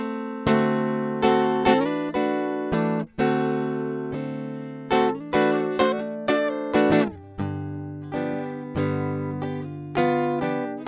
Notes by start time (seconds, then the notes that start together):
0.01 A3 C4
0.48 D3 A3 C4 F#4
1.24 D3 A3 C4 F#4 A4
1.67 D3 G#3 C4 F#4 A#4
1.82 E3 D4
2.15 A3 D4 F#4 B4
2.73 E3 A3 D4 F#4
3.20 D3 A3 C4 F#4 A4
3.42 A4
4.14 D3 A3 C4 F#4
4.92 D3 A3 C4 F#4 A4
5.17 E3 D4
5.34 E3 A3 D4 F#4 B4
5.52 C5
5.80 A3 D4 F#4 C5
5.93 D5
6.00 A3
6.29 A3 D4 F#4 D5
6.50 C5
6.75 E3 A3 D4 F#4 B4
6.92 B2 E3 A3 D4 F#4
7.40 G2 D3 B3
8.13 B3 D4 G4
8.17 F3
8.35 G3
8.77 G2 D3 G3 B3
9.43 B3 G4
9.66 F4
9.98 D3 B3 F4
10.42 B3 D4 G4